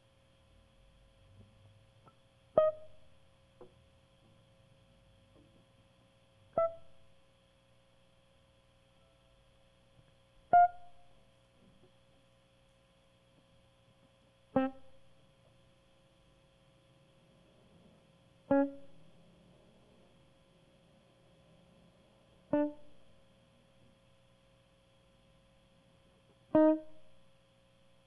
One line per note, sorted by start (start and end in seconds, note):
2.58 2.71 D#5
6.58 6.69 E5
10.53 10.68 F5
14.57 14.68 C4
18.51 18.66 C#4
22.54 22.72 D4
26.55 26.75 D#4